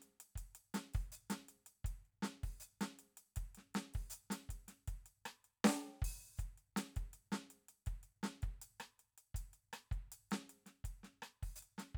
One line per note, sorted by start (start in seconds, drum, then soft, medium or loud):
0.02 closed hi-hat soft
0.20 closed hi-hat soft
0.35 kick soft
0.35 closed hi-hat soft
0.55 closed hi-hat soft
0.74 snare medium
0.74 closed hi-hat medium
0.94 kick soft
0.94 open hi-hat soft
1.12 hi-hat pedal medium
1.30 snare medium
1.30 closed hi-hat medium
1.48 closed hi-hat soft
1.66 closed hi-hat soft
1.84 kick soft
1.84 closed hi-hat soft
2.05 closed hi-hat soft
2.22 snare medium
2.22 closed hi-hat soft
2.43 kick soft
2.43 open hi-hat soft
2.60 closed hi-hat soft
2.60 hi-hat pedal medium
2.81 snare medium
2.81 closed hi-hat soft
2.99 closed hi-hat soft
3.17 closed hi-hat soft
3.36 kick soft
3.36 closed hi-hat soft
3.55 snare soft
3.55 closed hi-hat soft
3.74 snare medium
3.74 closed hi-hat soft
3.94 kick soft
3.94 open hi-hat soft
4.10 closed hi-hat soft
4.10 hi-hat pedal medium
4.30 snare medium
4.30 closed hi-hat medium
4.49 kick soft
4.49 closed hi-hat soft
4.68 snare soft
4.68 closed hi-hat soft
4.88 kick soft
4.88 closed hi-hat soft
5.06 closed hi-hat soft
5.25 cross-stick medium
5.25 closed hi-hat soft
5.44 closed hi-hat soft
5.64 snare medium
5.64 open hi-hat medium
5.67 snare medium
5.67 open hi-hat soft
6.02 kick soft
6.02 open hi-hat medium
6.37 kick soft
6.37 closed hi-hat soft
6.37 hi-hat pedal soft
6.58 closed hi-hat soft
6.76 snare medium
6.76 closed hi-hat medium
6.96 kick soft
6.96 closed hi-hat soft
7.13 closed hi-hat soft
7.32 snare medium
7.32 closed hi-hat soft
7.50 closed hi-hat soft
7.68 closed hi-hat soft
7.86 kick soft
7.86 closed hi-hat soft
8.03 closed hi-hat soft
8.23 snare medium
8.23 closed hi-hat soft
8.42 kick soft
8.42 closed hi-hat soft
8.62 closed hi-hat medium
8.80 cross-stick medium
8.80 closed hi-hat soft
8.99 closed hi-hat soft
9.18 closed hi-hat soft
9.34 kick soft
9.34 closed hi-hat medium
9.53 closed hi-hat soft
9.73 cross-stick medium
9.73 closed hi-hat soft
9.91 kick soft
9.91 closed hi-hat soft
10.12 closed hi-hat medium
10.31 snare medium
10.31 closed hi-hat soft
10.49 closed hi-hat soft
10.66 snare soft
10.66 closed hi-hat soft
10.84 kick soft
10.84 closed hi-hat soft
11.03 snare soft
11.03 closed hi-hat soft
11.22 cross-stick medium
11.22 closed hi-hat soft
11.43 kick soft
11.43 open hi-hat soft
11.56 hi-hat pedal medium
11.62 closed hi-hat soft
11.78 snare soft
11.78 closed hi-hat soft
11.95 kick soft